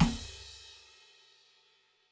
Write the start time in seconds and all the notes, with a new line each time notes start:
0.01 kick, snare, hi-hat pedal, crash
0.08 kick, cross-stick